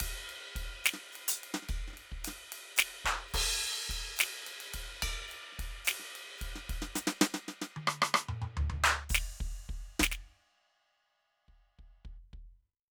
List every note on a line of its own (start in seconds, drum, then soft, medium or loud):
0.01 kick soft
0.01 ride loud
0.07 kick soft
0.30 ride soft
0.56 kick soft
0.56 ride medium
0.62 kick soft
0.85 snare loud
0.85 hi-hat pedal medium
0.85 ride medium
0.94 snare soft
1.13 hi-hat pedal soft
1.13 ride medium
1.29 open hi-hat loud
1.44 ride medium
1.55 snare medium
1.63 snare soft
1.69 kick soft
1.69 ride bell medium
1.77 kick soft
1.88 snare soft
1.94 snare soft
1.94 ride soft
2.00 snare soft
2.12 kick soft
2.25 snare soft
2.25 hi-hat pedal medium
2.25 ride loud
2.53 ride medium
2.77 kick soft
2.77 snare loud
2.77 hi-hat pedal medium
2.77 ride loud
3.05 kick soft
3.05 percussion medium
3.29 hi-hat pedal soft
3.35 kick soft
3.35 crash medium
3.41 kick soft
3.89 kick soft
3.89 snare soft
3.89 ride medium
4.17 snare loud
4.17 hi-hat pedal medium
4.17 ride loud
4.46 snare soft
4.46 hi-hat pedal soft
4.46 ride medium
4.61 ride medium
4.73 kick soft
4.73 hi-hat pedal soft
4.73 ride medium
5.03 kick soft
5.03 ride bell loud
5.09 kick soft
5.28 hi-hat pedal soft
5.28 ride soft
5.53 snare soft
5.60 kick soft
5.60 ride medium
5.85 snare medium
5.85 hi-hat pedal medium
5.85 ride loud
6.00 snare soft
6.16 ride medium
6.24 snare soft
6.38 kick soft
6.38 hi-hat pedal soft
6.38 ride medium
6.56 snare soft
6.70 kick soft
6.70 ride medium
6.76 kick soft
6.83 snare medium
6.96 snare medium
6.96 hi-hat pedal loud
7.08 snare medium
7.22 snare loud
7.35 snare medium
7.49 snare soft
7.62 snare medium
7.77 high tom medium
7.88 cross-stick loud
8.03 cross-stick loud
8.15 cross-stick loud
8.29 mid tom medium
8.42 mid tom medium
8.58 floor tom loud
8.70 floor tom loud
8.84 percussion loud
9.10 kick medium
9.10 hi-hat pedal medium
9.15 kick soft
9.15 snare medium
9.41 kick soft
9.48 kick soft
9.70 kick soft
10.00 kick soft
10.00 snare loud
10.04 snare loud
10.12 snare medium
11.49 kick soft
11.80 kick soft
12.06 kick soft
12.34 kick soft